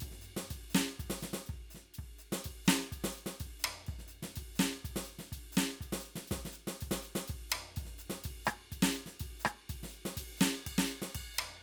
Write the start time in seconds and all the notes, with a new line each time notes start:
0.01 kick, ride
0.09 kick, snare
0.22 hi-hat pedal, ride
0.37 snare
0.51 kick, ride
0.57 kick
0.71 hi-hat pedal
0.75 snare
1.00 kick, ride
1.06 kick
1.10 snare
1.21 snare, hi-hat pedal
1.34 snare
1.47 kick, ride
1.56 kick
1.71 hi-hat pedal
1.75 snare
1.95 ride
1.99 kick
2.19 hi-hat pedal, ride
2.33 snare
2.45 kick, ride
2.52 kick
2.66 snare, hi-hat pedal
2.93 kick, ride
2.98 kick
3.05 snare
3.13 hi-hat pedal
3.18 ride
3.27 snare
3.41 kick, ride
3.47 kick
3.60 hi-hat pedal
3.65 floor tom
3.87 kick, ride bell
3.95 kick
3.99 snare
4.08 hi-hat pedal, ride
4.23 snare
4.36 kick, ride
4.43 kick
4.56 snare, hi-hat pedal
4.85 kick, ride
4.91 kick
4.96 snare
5.04 hi-hat pedal
5.08 ride
5.19 snare
5.33 kick, ride
5.38 kick
5.53 hi-hat pedal
5.58 snare
5.81 kick, ride
5.93 snare
6.01 hi-hat pedal
6.06 ride
6.16 snare
6.28 kick, snare, ride
6.38 kick
6.46 snare
6.53 hi-hat pedal
6.68 snare
6.81 kick, ride
6.89 kick, snare
7.02 hi-hat pedal, ride
7.16 snare
7.28 kick, ride
7.37 kick
7.50 hi-hat pedal, floor tom
7.77 kick, ride
7.85 kick, snare
7.99 hi-hat pedal, ride
8.10 snare
8.24 kick, ride
8.32 kick
8.46 cross-stick, hi-hat pedal
8.72 kick, ride
8.83 snare
8.93 hi-hat pedal, ride
9.07 snare
9.20 kick, ride
9.27 kick
9.40 hi-hat pedal
9.46 cross-stick
9.70 kick, ride
9.76 kick
9.84 snare
9.89 hi-hat pedal
9.94 ride
10.06 snare
10.17 kick, ride
10.38 snare, hi-hat pedal
10.67 kick, ride bell
10.79 snare
10.87 hi-hat pedal
10.91 ride
11.02 snare
11.15 kick, ride bell
11.22 kick
11.35 hi-hat pedal
11.39 floor tom